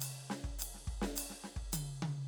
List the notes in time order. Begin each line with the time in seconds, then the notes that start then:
0.01 hi-hat pedal, ride
0.30 snare
0.44 kick
0.59 hi-hat pedal, ride
0.75 snare
0.88 kick
1.02 snare
1.16 hi-hat pedal, ride
1.30 snare
1.44 snare
1.57 kick
1.73 hi-hat pedal, high tom, ride bell
2.03 high tom